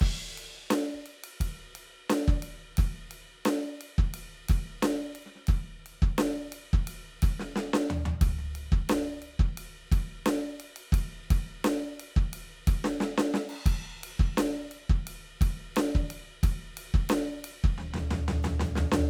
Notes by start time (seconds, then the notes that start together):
0.01 kick, ride
0.38 ride
0.71 snare, ride
0.95 kick
1.07 ride
1.24 ride
1.41 kick, ride
1.76 ride
2.10 snare, ride
2.28 kick
2.43 ride
2.78 kick, ride
3.12 ride
3.46 snare, ride
3.82 ride
3.99 kick
4.14 ride
4.49 kick, ride
4.83 snare, ride
5.16 ride
5.23 snare, ride
5.36 snare
5.48 kick, ride
5.87 ride
6.03 kick
6.19 snare, ride
6.53 ride
6.74 kick
6.88 ride
7.23 kick, ride
7.40 snare
7.56 snare
7.74 snare
7.91 floor tom
8.06 floor tom
8.22 kick, ride
8.39 floor tom
8.56 ride
8.73 kick, snare
8.90 snare, ride
9.23 ride
9.40 kick, snare
9.58 ride
9.92 kick, ride
10.27 snare, ride
10.61 ride
10.77 ride
10.93 kick, ride
11.31 kick, ride
11.65 snare, ride
12.00 ride
12.17 kick, snare
12.34 ride
12.68 kick, ride
12.85 snare
13.01 snare
13.18 snare
13.35 snare
13.50 crash
13.66 kick, ride
14.04 ride
14.20 kick
14.38 snare, ride
14.72 ride
14.90 kick
15.08 ride
15.42 kick, ride
15.77 snare, ride
15.96 kick
16.11 ride
16.44 kick, ride
16.78 ride
16.95 kick
17.10 snare, ride
17.45 ride
17.64 kick
17.79 snare, floor tom
17.94 snare, floor tom
18.11 snare, floor tom
18.29 snare, floor tom
18.43 snare, floor tom, hi-hat pedal
18.60 snare, floor tom
18.65 hi-hat pedal
18.76 snare, floor tom
18.88 hi-hat pedal
18.92 snare, floor tom